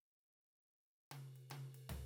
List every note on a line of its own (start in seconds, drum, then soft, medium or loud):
1.11 high tom medium
1.11 ride soft
1.36 ride soft
1.50 high tom medium
1.50 ride soft
1.74 ride soft
1.89 floor tom medium
1.89 ride medium